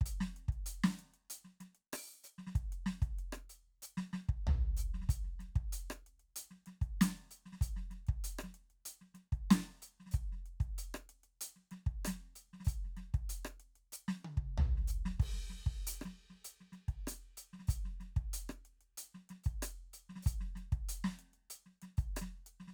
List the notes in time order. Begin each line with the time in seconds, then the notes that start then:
0.01 kick
0.06 closed hi-hat
0.21 snare
0.36 closed hi-hat
0.48 kick
0.52 closed hi-hat
0.66 closed hi-hat
0.84 snare
0.99 closed hi-hat
1.14 closed hi-hat
1.30 closed hi-hat
1.45 snare
1.60 snare, closed hi-hat
1.75 closed hi-hat
1.93 open hi-hat, cross-stick
2.24 open hi-hat, hi-hat pedal
2.38 snare
2.47 snare
2.55 kick, closed hi-hat
2.72 closed hi-hat
2.86 snare
3.02 kick, closed hi-hat
3.19 closed hi-hat
3.33 cross-stick
3.37 cross-stick
3.50 closed hi-hat
3.82 hi-hat pedal
3.97 snare
4.13 snare
4.29 kick
4.47 floor tom
4.77 closed hi-hat, hi-hat pedal
4.94 snare
5.02 snare
5.09 closed hi-hat, kick
5.24 snare
5.39 snare, closed hi-hat
5.56 kick, closed hi-hat
5.73 closed hi-hat
5.90 cross-stick
6.07 closed hi-hat
6.20 closed hi-hat
6.36 closed hi-hat
6.51 snare
6.66 snare, closed hi-hat
6.82 kick, closed hi-hat
7.01 open hi-hat, snare
7.09 snare
7.31 open hi-hat
7.46 snare
7.53 snare
7.57 snare
7.61 closed hi-hat, kick
7.76 snare
7.91 snare, closed hi-hat
8.07 kick, closed hi-hat
8.24 closed hi-hat
8.39 cross-stick
8.44 snare
8.54 closed hi-hat
8.70 closed hi-hat
8.86 closed hi-hat
9.01 snare
9.14 snare, closed hi-hat
9.32 kick, closed hi-hat
9.51 open hi-hat, snare
9.82 open hi-hat
10.00 snare
10.06 snare
10.10 kick, snare, hi-hat pedal
10.14 closed hi-hat
10.32 snare
10.46 closed hi-hat
10.60 kick, closed hi-hat
10.78 closed hi-hat
10.94 cross-stick
11.09 closed hi-hat
11.24 closed hi-hat
11.41 closed hi-hat
11.56 snare
11.71 snare, closed hi-hat
11.86 kick, closed hi-hat
12.05 open hi-hat, cross-stick, snare
12.36 open hi-hat
12.53 snare
12.60 snare
12.65 closed hi-hat, kick, hi-hat pedal
12.85 snare
12.97 snare, closed hi-hat
13.14 kick, closed hi-hat
13.30 closed hi-hat
13.45 cross-stick
13.60 closed hi-hat
13.76 closed hi-hat
13.92 hi-hat pedal
14.08 snare
14.25 high tom
14.37 kick
14.58 floor tom
14.77 snare
14.88 hi-hat pedal
15.06 snare
15.20 kick, crash
15.33 snare
15.50 snare
15.66 kick
15.87 closed hi-hat
16.01 cross-stick, snare
16.30 snare
16.45 closed hi-hat
16.61 snare
16.72 snare, closed hi-hat
16.88 kick, closed hi-hat
17.07 open hi-hat, cross-stick
17.12 cross-stick
17.37 open hi-hat
17.53 snare
17.59 snare
17.67 closed hi-hat, kick, hi-hat pedal
17.85 snare
18.00 snare, closed hi-hat
18.16 kick, closed hi-hat
18.33 closed hi-hat
18.49 cross-stick
18.65 closed hi-hat
18.81 closed hi-hat
18.98 closed hi-hat
19.14 snare
19.29 snare, closed hi-hat
19.44 closed hi-hat, kick
19.62 open hi-hat, cross-stick
19.94 open hi-hat
20.09 snare
20.16 snare
20.23 kick, hi-hat pedal
20.27 closed hi-hat
20.41 snare
20.56 snare, closed hi-hat
20.72 kick, closed hi-hat
20.89 closed hi-hat
21.04 snare
21.19 closed hi-hat
21.34 closed hi-hat
21.50 closed hi-hat
21.66 snare
21.82 snare, closed hi-hat
21.97 closed hi-hat, kick
22.16 open hi-hat, cross-stick
22.21 snare
22.46 open hi-hat
22.60 snare
22.68 snare